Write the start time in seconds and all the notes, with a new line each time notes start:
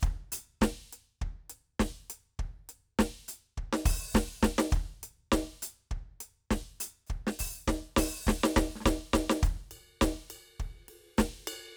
0.01 kick, hi-hat pedal
0.32 closed hi-hat
0.61 kick, snare
0.93 closed hi-hat
1.22 kick
1.50 closed hi-hat
1.80 kick, snare
2.10 closed hi-hat
2.39 kick, crash, ride
2.69 closed hi-hat
2.99 kick, snare
3.28 closed hi-hat
3.58 kick
3.73 snare
3.86 open hi-hat, kick
4.15 kick, snare
4.43 kick, snare
4.58 snare
4.71 kick, hi-hat pedal
5.03 closed hi-hat
5.32 kick, snare
5.62 closed hi-hat
5.91 kick
6.21 closed hi-hat
6.51 kick, snare
6.78 closed hi-hat, kick
7.07 kick, hi-hat pedal
7.13 crash
7.27 snare
7.39 open hi-hat, kick
7.68 kick, snare
7.97 open hi-hat, kick, snare
8.27 kick, snare
8.44 snare
8.56 kick, snare
8.76 snare
8.81 snare
8.86 kick, snare, hi-hat pedal
9.14 kick, snare
9.30 snare
9.43 kick, hi-hat pedal
9.71 ride bell
10.01 kick, snare, hi-hat pedal
10.30 ride bell
10.60 kick, ride
10.88 ride
11.18 kick, snare, hi-hat pedal, ride
11.47 ride bell